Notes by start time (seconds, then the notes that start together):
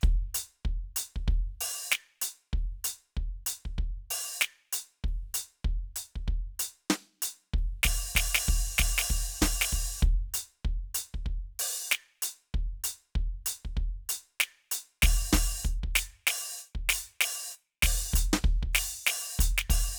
0.01 kick, hi-hat pedal
0.34 closed hi-hat
0.65 kick
0.96 closed hi-hat
1.16 kick
1.28 kick, crash
1.61 open hi-hat
1.91 snare, hi-hat pedal
2.21 closed hi-hat
2.53 kick
2.58 crash
2.84 closed hi-hat
3.17 kick
3.46 closed hi-hat
3.65 kick
3.78 kick
4.10 open hi-hat
4.41 snare, hi-hat pedal
4.73 closed hi-hat
5.04 kick
5.08 crash
5.34 closed hi-hat
5.65 kick
5.96 closed hi-hat
6.16 kick
6.28 kick
6.59 open hi-hat
6.90 snare, hi-hat pedal
7.22 closed hi-hat
7.54 kick
7.58 crash
7.83 open hi-hat, kick, snare
8.15 open hi-hat, kick, snare
8.35 open hi-hat, snare
8.48 kick
8.78 open hi-hat, kick, snare
8.98 open hi-hat, snare
9.10 kick
9.42 open hi-hat, kick, snare
9.61 open hi-hat, snare
9.73 kick
10.00 kick, hi-hat pedal
10.34 closed hi-hat
10.65 kick
10.95 closed hi-hat
11.14 kick
11.26 kick
11.59 open hi-hat
11.90 snare, hi-hat pedal
12.22 closed hi-hat
12.54 kick
12.84 closed hi-hat
13.15 kick
13.46 closed hi-hat
13.65 kick
13.77 kick
14.09 open hi-hat
14.40 snare, hi-hat pedal
14.71 closed hi-hat
15.02 open hi-hat, kick, snare
15.33 open hi-hat, kick, snare
15.63 kick, hi-hat pedal
15.83 kick
15.91 kick, hi-hat pedal
15.95 closed hi-hat, snare
16.27 open hi-hat, snare
16.58 hi-hat pedal
16.75 kick
16.89 open hi-hat, snare
17.21 open hi-hat, snare
17.51 hi-hat pedal
17.82 open hi-hat, kick, snare
18.12 closed hi-hat, kick, hi-hat pedal
18.33 snare
18.44 kick
18.63 kick
18.72 kick, snare, hi-hat pedal
18.76 open hi-hat
19.07 open hi-hat, snare
19.37 closed hi-hat, kick, hi-hat pedal
19.58 snare
19.70 open hi-hat, kick